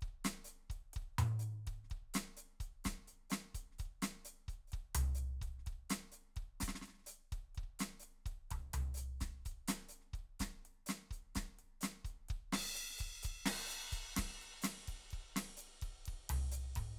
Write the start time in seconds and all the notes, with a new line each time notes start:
0.01 kick, open hi-hat
0.08 kick
0.25 closed hi-hat, snare
0.45 closed hi-hat, hi-hat pedal
0.70 kick, closed hi-hat
0.75 kick
0.94 kick, closed hi-hat
1.02 kick
1.19 closed hi-hat, mid tom
1.39 closed hi-hat, hi-hat pedal
1.67 kick, closed hi-hat
1.73 kick
1.84 snare
1.90 kick, closed hi-hat
1.97 kick
2.14 closed hi-hat, snare
2.37 hi-hat pedal
2.44 snare
2.60 closed hi-hat, kick
2.84 open hi-hat, kick, snare
2.92 kick
3.08 closed hi-hat
3.30 open hi-hat, snare, hi-hat pedal
3.55 closed hi-hat, kick
3.72 snare
3.79 closed hi-hat, kick
3.85 kick
4.02 closed hi-hat, snare
4.25 closed hi-hat, hi-hat pedal
4.48 closed hi-hat, kick
4.54 kick
4.68 hi-hat pedal
4.72 kick, closed hi-hat
4.95 closed hi-hat, floor tom
5.15 closed hi-hat, hi-hat pedal
5.42 kick, closed hi-hat
5.48 kick
5.59 snare
5.67 kick, closed hi-hat
5.73 kick
5.90 closed hi-hat, snare
6.12 closed hi-hat, hi-hat pedal
6.36 kick, closed hi-hat
6.42 kick
6.60 open hi-hat, kick, snare
6.68 kick, snare
6.75 snare
6.82 snare
6.86 snare, closed hi-hat
6.94 snare
7.04 snare, hi-hat pedal
7.08 closed hi-hat, snare
7.13 snare
7.19 snare
7.32 kick, closed hi-hat
7.38 kick
7.55 kick, closed hi-hat
7.63 kick
7.79 closed hi-hat, snare
8.00 closed hi-hat, hi-hat pedal
8.26 kick, closed hi-hat
8.32 kick
8.51 kick, closed hi-hat, floor tom
8.74 closed hi-hat, floor tom
8.94 closed hi-hat, hi-hat pedal
9.21 closed hi-hat, kick, snare
9.27 kick
9.45 closed hi-hat, kick
9.51 kick
9.68 closed hi-hat, snare
9.89 closed hi-hat, hi-hat pedal
10.01 snare
10.14 kick, closed hi-hat
10.19 kick
10.40 closed hi-hat, kick, snare
10.46 kick
10.65 closed hi-hat
10.86 closed hi-hat, snare, hi-hat pedal
11.11 closed hi-hat, kick
11.35 closed hi-hat, kick, snare
11.42 kick
11.59 closed hi-hat
11.81 closed hi-hat, snare, hi-hat pedal
12.05 closed hi-hat, kick
12.10 kick
12.29 kick, closed hi-hat
12.53 snare, crash
12.75 closed hi-hat, hi-hat pedal
12.90 snare
12.98 closed hi-hat, kick
13.06 kick
13.23 closed hi-hat, kick
13.31 kick
13.46 snare, crash
13.66 closed hi-hat, hi-hat pedal
13.92 closed hi-hat, kick
13.99 kick
14.17 kick, snare, ride
14.24 kick
14.42 ride
14.62 snare, hi-hat pedal, ride
14.88 kick, ride
14.93 kick
15.11 kick, ride
15.18 kick
15.36 snare, ride
15.57 hi-hat pedal, ride
15.82 kick, ride
15.88 kick
16.06 kick, ride
16.13 kick
16.30 floor tom, ride
16.52 hi-hat pedal, ride
16.76 kick, mid tom, ride